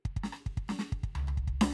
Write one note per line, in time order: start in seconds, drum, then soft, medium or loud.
0.05 kick soft
0.16 kick soft
0.24 snare medium
0.24 ride soft
0.32 cross-stick medium
0.36 ride soft
0.46 kick soft
0.57 kick soft
0.68 snare medium
0.68 ride soft
0.79 snare medium
0.79 ride soft
0.92 kick soft
1.03 kick soft
1.15 floor tom loud
1.15 high tom medium
1.27 floor tom medium
1.27 high tom medium
1.37 kick soft
1.47 kick soft
1.61 snare loud
1.61 ride medium